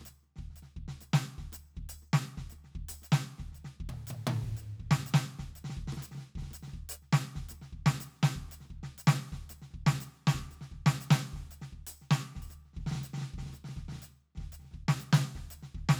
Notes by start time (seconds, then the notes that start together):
0.01 cross-stick
0.05 percussion
0.23 cross-stick
0.36 kick, snare
0.39 snare
0.50 snare, crash
0.56 percussion
0.63 snare
0.76 kick, cross-stick
0.88 snare
0.97 snare
1.01 cross-stick, snare, percussion
1.14 snare
1.27 snare
1.38 kick, snare
1.51 cross-stick, snare, percussion
1.74 kick, cross-stick, snare
1.89 percussion
2.02 cross-stick
2.13 snare
2.19 cross-stick
2.38 kick, snare
2.50 cross-stick, snare, percussion
2.64 snare
2.71 kick, snare
2.76 snare
2.89 percussion
3.02 cross-stick, percussion
3.12 snare
3.28 cross-stick
3.39 kick, snare
3.52 snare, percussion
3.65 snare
3.77 kick, snare
3.89 high tom
4.00 cross-stick
4.07 high tom, percussion
4.12 percussion
4.21 snare
4.27 high tom
4.43 kick
4.56 snare, percussion
4.80 kick
4.91 snare
5.03 snare, percussion
5.14 snare
5.27 snare
5.39 kick, snare
5.51 snare
5.53 snare, percussion
5.64 snare
5.70 snare
5.77 kick, cross-stick
5.88 snare
5.92 cross-stick
5.97 snare
6.02 cross-stick, percussion
6.11 snare
6.15 snare
6.18 snare
6.20 snare
6.26 snare
6.35 kick, snare
6.42 snare
6.47 snare
6.51 cross-stick, percussion
6.63 snare
6.68 snare
6.74 kick, snare
6.89 percussion
6.93 percussion
7.02 snare
7.13 snare
7.36 kick, snare
7.43 snare
7.49 cross-stick, snare, percussion
7.62 snare
7.73 kick, snare
7.86 snare
7.91 cross-stick
7.99 cross-stick, snare, percussion
8.23 snare
8.28 cross-stick
8.36 kick
8.48 cross-stick, snare, percussion
8.61 snare
8.65 cross-stick
8.70 kick, snare
8.83 snare
8.95 snare, percussion
9.07 snare
9.12 cross-stick
9.22 snare
9.32 kick, snare
9.42 snare
9.49 cross-stick, snare, percussion
9.62 snare
9.71 kick, snare
9.87 snare
9.93 snare
10.01 cross-stick, snare, percussion
10.20 snare
10.27 snare
10.34 kick, cross-stick
10.44 snare
10.50 cross-stick, snare, percussion
10.61 snare
10.72 kick, snare
10.75 snare
10.86 snare
11.00 snare, percussion
11.11 snare
11.16 snare
11.33 kick, snare
11.41 snare
11.49 snare, percussion
11.62 snare
11.73 kick, snare
11.76 snare
11.87 percussion
12.02 snare
12.11 snare
12.35 kick, snare
12.42 snare, percussion
12.50 cross-stick, percussion
12.65 snare
12.74 kick, snare
12.78 cross-stick, snare
12.86 snare
12.91 snare
12.95 snare
13.01 snare, percussion
13.14 snare
13.18 snare
13.21 snare
13.28 snare
13.34 kick
13.38 snare
13.43 snare
13.46 snare
13.50 cross-stick, snare, percussion
13.64 snare
13.69 cross-stick, snare
13.76 kick, snare
13.89 snare
13.92 snare
13.96 snare
13.99 snare
14.01 snare, percussion
14.04 percussion
14.11 snare
14.35 kick, snare
14.38 snare
14.40 snare
14.49 snare
14.51 snare, percussion
14.59 snare
14.62 snare
14.65 snare
14.71 kick, snare
14.76 cross-stick
14.88 snare
15.00 snare, percussion
15.13 snare
15.17 snare
15.35 kick, snare
15.51 snare, percussion
15.63 snare
15.75 kick, snare
15.89 snare